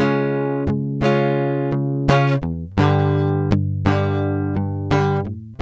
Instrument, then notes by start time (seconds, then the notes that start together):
acoustic guitar
0.00 C#3 G#3 C#4 F4
0.69 C#3 G#3
1.03 C#3 G#3 C#4
1.07 F4
1.73 C#3 G#3
2.10 C#3 G#3 C#4 F4
2.44 E2
2.79 G2 D3 G3
3.52 G2 D3
3.87 G2 D3 G3
4.58 G2
4.92 D3 G3
5.28 A2